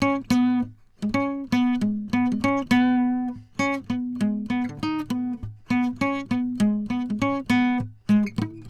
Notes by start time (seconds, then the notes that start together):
0.02 C#4
0.31 B3
1.15 C#4
1.53 B3
1.82 G#3
2.14 B3
2.33 G#3
2.45 C#4
2.71 B3
3.60 C#4
3.90 B3
4.21 G#3
4.51 B3
4.84 D#4
5.11 B3
5.71 B3
6.02 C#4
6.32 B3
6.61 G#3
6.91 B3
7.11 G#3
7.22 C#4
7.50 B3
8.10 G#3
8.43 E4